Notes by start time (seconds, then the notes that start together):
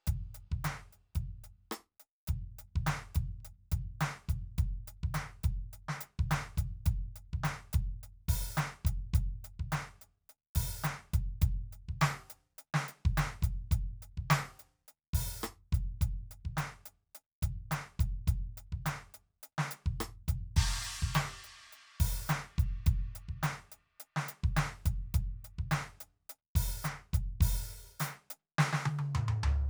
0.05 closed hi-hat, kick
0.35 closed hi-hat
0.52 kick
0.64 snare, closed hi-hat
0.93 closed hi-hat
1.15 kick, closed hi-hat
1.44 closed hi-hat
1.71 cross-stick, closed hi-hat
2.00 closed hi-hat
2.27 closed hi-hat, kick
2.59 closed hi-hat
2.76 kick
2.86 snare, closed hi-hat
3.15 kick, closed hi-hat
3.40 kick
3.45 closed hi-hat
3.72 kick, closed hi-hat
4.01 snare, closed hi-hat
4.29 kick, closed hi-hat
4.58 kick, closed hi-hat
4.88 closed hi-hat
5.03 kick
5.14 snare, closed hi-hat
5.43 kick, closed hi-hat
5.73 closed hi-hat
5.88 snare
6.01 closed hi-hat
6.19 kick
6.31 snare, closed hi-hat
6.57 kick, closed hi-hat
6.86 closed hi-hat, kick
7.16 closed hi-hat
7.33 kick
7.44 snare, closed hi-hat
7.73 kick, closed hi-hat
8.03 closed hi-hat
8.28 kick, open hi-hat
8.55 snare, closed hi-hat, hi-hat pedal
8.85 kick, closed hi-hat
9.14 kick, closed hi-hat
9.44 closed hi-hat
9.59 kick
9.72 closed hi-hat, snare
10.01 closed hi-hat
10.29 closed hi-hat
10.55 kick, open hi-hat
10.83 snare, closed hi-hat, hi-hat pedal
10.90 snare
11.13 kick, closed hi-hat
11.42 closed hi-hat, kick
11.73 closed hi-hat
11.89 kick
12.01 snare, closed hi-hat
12.30 closed hi-hat
12.58 closed hi-hat
12.74 snare
12.88 closed hi-hat
13.05 kick
13.17 snare, closed hi-hat
13.42 kick, closed hi-hat
13.71 closed hi-hat, kick
14.02 closed hi-hat
14.17 kick
14.30 snare, closed hi-hat
14.59 closed hi-hat
14.88 closed hi-hat
15.13 kick, open hi-hat
15.41 cross-stick, closed hi-hat, hi-hat pedal
15.72 kick, closed hi-hat
16.01 closed hi-hat, kick
16.31 closed hi-hat
16.45 kick
16.57 snare, closed hi-hat
16.86 closed hi-hat
17.15 closed hi-hat
17.42 kick, closed hi-hat
17.71 snare, closed hi-hat
17.99 kick, closed hi-hat
18.27 closed hi-hat, kick
18.57 closed hi-hat
18.72 kick
18.86 snare, closed hi-hat
19.14 closed hi-hat
19.43 closed hi-hat
19.58 snare
19.71 closed hi-hat
19.86 kick
20.00 cross-stick, closed hi-hat
20.28 kick, closed hi-hat
20.56 kick, crash
20.84 closed hi-hat
21.02 kick
21.15 snare, closed hi-hat
21.44 closed hi-hat
21.73 closed hi-hat
22.00 kick, open hi-hat
22.27 snare, closed hi-hat, hi-hat pedal
22.58 kick, closed hi-hat
22.86 closed hi-hat, kick
23.15 closed hi-hat
23.29 kick
23.43 snare, closed hi-hat
23.72 closed hi-hat
24.00 closed hi-hat
24.16 snare
24.28 closed hi-hat
24.44 kick
24.57 snare, closed hi-hat
24.86 kick, closed hi-hat
25.14 closed hi-hat, kick
25.44 closed hi-hat
25.58 kick
25.71 snare, closed hi-hat
26.00 closed hi-hat
26.29 closed hi-hat
26.55 kick, open hi-hat
26.83 snare, closed hi-hat, hi-hat pedal
27.13 kick, closed hi-hat
27.41 open hi-hat, kick
28.00 snare, hi-hat pedal, open hi-hat
28.30 closed hi-hat
28.58 snare
28.73 snare
28.85 high tom
28.99 high tom
29.15 mid tom
29.28 mid tom
29.43 floor tom